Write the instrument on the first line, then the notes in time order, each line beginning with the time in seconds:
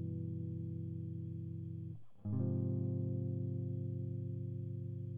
electric guitar
2.27 G#2
2.34 C3
2.41 F3